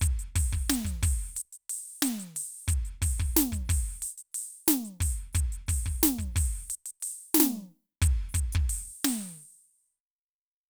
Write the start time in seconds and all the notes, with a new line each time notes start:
0.01 closed hi-hat, kick, hi-hat pedal
0.20 closed hi-hat
0.36 open hi-hat, kick
0.53 kick
0.69 closed hi-hat, snare, hi-hat pedal
0.85 closed hi-hat, kick
1.01 open hi-hat, kick, hi-hat pedal
1.36 closed hi-hat, hi-hat pedal
1.53 closed hi-hat
1.70 open hi-hat
2.01 closed hi-hat, snare, hi-hat pedal
2.20 closed hi-hat
2.36 open hi-hat, hi-hat pedal
2.68 closed hi-hat, kick, hi-hat pedal
2.86 closed hi-hat
3.03 open hi-hat, kick
3.20 kick
3.34 closed hi-hat, snare, hi-hat pedal
3.53 closed hi-hat, kick
3.66 hi-hat pedal
3.70 open hi-hat, kick
4.03 open hi-hat, hi-hat pedal
4.18 closed hi-hat
4.32 open hi-hat, hi-hat pedal
4.67 closed hi-hat, snare, hi-hat pedal
4.85 closed hi-hat
5.01 open hi-hat, kick, hi-hat pedal
5.33 closed hi-hat, kick, hi-hat pedal
5.53 closed hi-hat
5.67 open hi-hat, kick, hi-hat pedal
5.87 kick
6.01 closed hi-hat, snare, hi-hat pedal
6.19 closed hi-hat, kick
6.32 hi-hat pedal
6.37 open hi-hat, kick
6.68 closed hi-hat, hi-hat pedal
6.86 closed hi-hat
7.01 open hi-hat, hi-hat pedal
7.35 snare, hi-hat pedal
7.41 snare
8.02 open hi-hat, kick
8.30 hi-hat pedal
8.35 closed hi-hat, kick
8.53 kick, closed hi-hat
8.70 open hi-hat
9.05 open hi-hat, snare